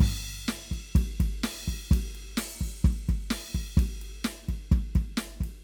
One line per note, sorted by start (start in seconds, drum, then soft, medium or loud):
0.01 kick loud
0.01 crash loud
0.49 snare loud
0.49 ride medium
0.72 kick medium
0.72 ride medium
0.96 kick loud
0.96 ride loud
1.21 kick loud
1.21 ride medium
1.44 snare loud
1.44 crash loud
1.68 kick medium
1.68 ride medium
1.92 kick loud
1.92 ride loud
2.16 ride medium
2.38 open hi-hat loud
2.38 snare loud
2.62 kick medium
2.62 ride medium
2.85 kick loud
2.85 ride soft
3.09 kick medium
3.09 ride medium
3.31 snare loud
3.31 crash loud
3.55 kick medium
3.55 ride medium
3.78 kick loud
3.78 ride medium
4.02 ride medium
4.24 snare loud
4.24 hi-hat pedal soft
4.24 ride medium
4.49 kick medium
4.49 ride medium
4.72 kick loud
4.72 ride medium
4.96 kick loud
4.96 ride medium
5.18 snare loud
5.18 ride soft
5.41 kick medium
5.41 ride medium